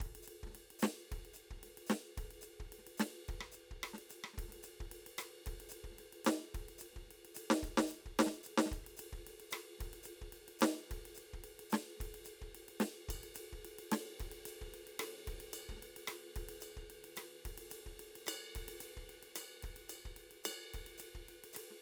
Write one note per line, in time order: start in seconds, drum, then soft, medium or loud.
0.00 kick soft
0.00 ride medium
0.07 kick soft
0.12 kick soft
0.12 ride medium
0.22 hi-hat pedal soft
0.28 ride medium
0.43 kick soft
0.43 snare soft
0.50 snare soft
0.54 snare soft
0.54 ride medium
0.58 snare soft
0.70 ride soft
0.79 snare medium
0.79 hi-hat pedal medium
0.79 ride medium
1.11 kick soft
1.11 snare soft
1.11 ride soft
1.25 ride soft
1.33 hi-hat pedal soft
1.33 ride soft
1.50 kick soft
1.50 snare soft
1.56 snare soft
1.60 snare soft
1.62 snare soft
1.62 ride medium
1.64 snare soft
1.66 snare soft
1.77 ride soft
1.86 snare medium
1.86 hi-hat pedal medium
1.86 ride medium
2.17 kick soft
2.17 ride medium
2.24 kick soft
2.31 ride soft
2.41 hi-hat pedal medium
2.41 ride soft
2.60 kick soft
2.72 kick soft
2.72 ride medium
2.78 snare soft
2.87 ride soft
2.97 snare medium
2.97 hi-hat pedal medium
2.97 ride medium
3.28 kick soft
3.28 ride soft
3.36 kick soft
3.40 cross-stick medium
3.51 hi-hat pedal medium
3.51 ride soft
3.71 kick soft
3.83 cross-stick medium
3.83 ride medium
3.93 snare soft
3.98 ride soft
4.09 hi-hat pedal soft
4.09 ride medium
4.24 cross-stick medium
4.33 snare soft
4.37 kick soft
4.37 ride medium
4.48 snare soft
4.48 ride soft
4.55 snare soft
4.63 hi-hat pedal medium
4.63 ride medium
4.80 kick soft
4.91 ride medium
5.06 ride medium
5.18 cross-stick medium
5.18 hi-hat pedal medium
5.18 ride medium
5.46 kick soft
5.46 ride medium
5.54 kick soft
5.60 ride soft
5.69 hi-hat pedal medium
5.69 ride medium
5.84 kick soft
5.91 snare soft
5.95 snare soft
5.98 snare soft
5.98 ride soft
6.12 ride soft
6.24 snare medium
6.24 hi-hat pedal medium
6.24 ride medium
6.54 kick soft
6.54 snare soft
6.54 ride soft
6.68 ride soft
6.78 hi-hat pedal medium
6.78 ride medium
6.93 kick soft
6.93 snare soft
6.97 snare soft
7.00 snare soft
7.11 ride soft
7.25 ride soft
7.34 hi-hat pedal medium
7.34 ride medium
7.50 snare medium
7.62 kick soft
7.62 ride soft
7.77 snare medium
7.87 hi-hat pedal medium
7.91 ride soft
8.05 kick soft
8.19 snare loud
8.19 ride medium
8.26 snare soft
8.34 ride soft
8.43 hi-hat pedal medium
8.43 ride soft
8.57 snare medium
8.66 snare soft
8.71 kick soft
8.71 ride soft
8.84 cross-stick soft
8.84 ride soft
8.92 cross-stick soft
8.96 hi-hat pedal medium
8.96 ride medium
9.12 kick soft
9.27 snare soft
9.27 ride medium
9.40 ride soft
9.50 cross-stick medium
9.50 hi-hat pedal medium
9.50 ride medium
9.78 kick soft
9.78 snare soft
9.78 ride medium
9.84 snare soft
9.88 snare soft
9.93 ride soft
10.03 hi-hat pedal medium
10.03 ride medium
10.21 kick soft
10.32 ride medium
10.48 ride soft
10.59 snare loud
10.59 hi-hat pedal medium
10.59 ride medium
10.90 kick soft
10.90 snare soft
10.90 ride medium
11.05 ride soft
11.14 hi-hat pedal soft
11.14 ride medium
11.33 kick soft
11.44 ride medium
11.59 ride soft
11.70 snare medium
11.70 hi-hat pedal medium
11.70 ride medium
11.97 kick soft
11.97 snare soft
12.01 ride medium
12.08 kick soft
12.14 ride soft
12.24 hi-hat pedal soft
12.24 ride medium
12.41 kick soft
12.55 ride medium
12.68 ride soft
12.79 snare medium
12.79 hi-hat pedal soft
12.79 ride medium
13.08 kick soft
13.08 ride bell medium
13.14 kick soft
13.23 ride soft
13.34 hi-hat pedal medium
13.34 ride medium
13.52 kick soft
13.65 ride medium
13.79 ride medium
13.91 snare medium
13.91 hi-hat pedal soft
13.91 ride medium
14.20 kick soft
14.20 ride medium
14.31 ride medium
14.45 hi-hat pedal medium
14.45 ride medium
14.61 kick soft
14.66 snare soft
14.71 snare soft
14.71 ride medium
14.87 ride soft
14.99 cross-stick medium
14.99 hi-hat pedal soft
14.99 ride loud
15.27 kick soft
15.27 ride medium
15.33 kick soft
15.40 ride medium
15.53 hi-hat pedal soft
15.53 ride bell medium
15.69 kick soft
15.69 snare soft
15.76 snare soft
15.80 snare soft
15.80 ride medium
15.84 snare soft
15.96 ride medium
16.07 cross-stick medium
16.07 hi-hat pedal medium
16.07 ride medium
16.36 kick soft
16.36 ride medium
16.49 ride medium
16.60 hi-hat pedal soft
16.60 ride bell medium
16.76 kick soft
16.90 ride soft
17.04 ride soft
17.16 cross-stick medium
17.16 hi-hat pedal medium
17.16 ride medium
17.45 kick soft
17.45 snare soft
17.45 ride medium
17.58 ride medium
17.70 hi-hat pedal soft
17.70 ride medium
17.86 kick soft
17.99 ride medium
18.15 ride medium
18.26 cross-stick medium
18.26 snare soft
18.26 hi-hat pedal medium
18.26 ride bell loud
18.55 kick soft
18.55 ride medium
18.68 ride medium
18.80 hi-hat pedal soft
18.80 ride medium
18.97 kick soft
19.09 ride soft
19.23 ride soft
19.35 cross-stick soft
19.35 hi-hat pedal medium
19.35 ride bell medium
19.62 kick soft
19.62 ride soft
19.76 ride soft
19.89 hi-hat pedal soft
19.89 ride bell medium
20.05 kick soft
20.16 ride soft
20.31 ride soft
20.44 snare soft
20.44 hi-hat pedal medium
20.44 ride bell loud
20.50 cross-stick soft
20.74 kick soft
20.74 ride medium
20.86 ride soft
20.98 hi-hat pedal medium
20.98 ride medium
21.15 kick soft
21.28 ride soft
21.44 ride medium
21.53 cross-stick soft
21.53 hi-hat pedal medium
21.53 ride medium
21.70 snare soft